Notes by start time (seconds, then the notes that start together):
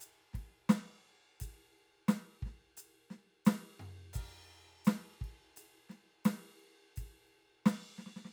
0.01 hi-hat pedal, ride
0.34 kick, snare, ride
0.70 snare, hi-hat pedal, ride
1.41 kick, hi-hat pedal, ride
2.09 snare, hi-hat pedal, ride
2.43 kick, snare, ride
2.77 hi-hat pedal, ride
3.11 snare, ride
3.46 snare, hi-hat pedal, ride
3.80 floor tom, ride
4.14 kick, hi-hat pedal, crash
4.85 snare, hi-hat pedal, ride
5.22 kick, ride
5.57 hi-hat pedal, ride
5.90 snare, ride
6.25 snare, hi-hat pedal, ride
6.60 ride
6.97 kick, hi-hat pedal, ride
7.28 ride
7.66 snare, hi-hat pedal, ride
7.99 snare
8.07 snare
8.17 snare
8.25 snare